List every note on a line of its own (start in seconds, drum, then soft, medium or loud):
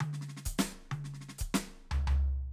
0.00 high tom loud
0.13 snare soft
0.21 snare soft
0.29 snare soft
0.37 snare soft
0.45 closed hi-hat medium
0.45 kick medium
0.58 snare loud
0.58 hi-hat pedal loud
0.91 high tom loud
1.04 snare soft
1.14 snare soft
1.21 snare soft
1.29 snare soft
1.38 closed hi-hat medium
1.38 kick medium
1.54 snare loud
1.54 hi-hat pedal medium
1.91 floor tom loud
2.07 floor tom loud